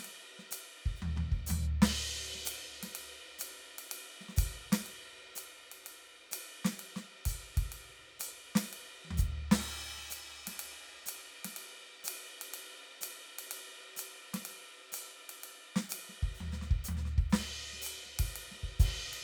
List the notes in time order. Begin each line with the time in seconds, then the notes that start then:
0.01 hi-hat pedal, ride
0.39 snare
0.51 hi-hat pedal, ride
0.86 kick
0.96 hi-hat pedal
1.02 floor tom, high tom
1.17 floor tom, high tom
1.32 kick
1.47 floor tom, hi-hat pedal, high tom
1.82 snare, ride
1.92 hi-hat pedal
2.35 snare
2.45 hi-hat pedal, ride
2.83 snare, ride
2.91 hi-hat pedal
2.95 ride
3.39 hi-hat pedal, ride
3.79 ride
3.86 hi-hat pedal
3.91 ride
4.21 snare
4.29 snare
4.37 kick, hi-hat pedal, ride
4.72 snare, ride
4.84 hi-hat pedal, ride
5.35 hi-hat pedal, ride
5.72 ride
5.85 hi-hat pedal, ride
6.31 hi-hat pedal, ride
6.65 snare, ride
6.78 hi-hat pedal, ride
6.96 snare
7.25 kick, hi-hat pedal, ride
7.57 kick, ride
7.71 hi-hat pedal, ride
8.20 hi-hat pedal, ride
8.55 snare, ride
8.66 hi-hat pedal
8.73 ride
9.04 high tom
9.11 floor tom
9.17 kick, hi-hat pedal
9.51 snare, crash
9.62 hi-hat pedal
9.97 snare
10.10 hi-hat pedal, ride
10.47 snare, ride
10.59 hi-hat pedal, ride
11.06 hi-hat pedal, ride
11.45 snare, ride
11.56 ride
12.04 hi-hat pedal, ride
12.25 hi-hat pedal
12.41 ride
12.52 hi-hat pedal, ride
13.01 hi-hat pedal, ride
13.39 ride
13.46 hi-hat pedal
13.51 ride
13.96 hi-hat pedal, ride
14.34 snare, ride
14.44 hi-hat pedal, ride
14.92 hi-hat pedal, ride
15.29 ride
15.40 hi-hat pedal, ride
15.76 snare
15.89 hi-hat pedal, ride
16.09 snare
16.23 kick
16.34 hi-hat pedal
16.40 floor tom
16.52 snare
16.61 snare
16.71 kick
16.84 hi-hat pedal
16.89 floor tom
16.97 snare
17.05 snare
17.18 kick
17.30 snare, hi-hat pedal
17.34 ride
17.73 snare
17.82 hi-hat pedal
17.87 ride
18.05 snare
18.19 kick, ride
18.27 hi-hat pedal
18.36 ride
18.51 snare
18.63 kick
18.80 kick, hi-hat pedal, ride
19.13 ride